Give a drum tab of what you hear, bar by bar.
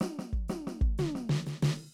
HH |p--p--p--po-|
SD |oo-oo-ogooo-|
FT |og-oo-o-----|
BD |--o--o------|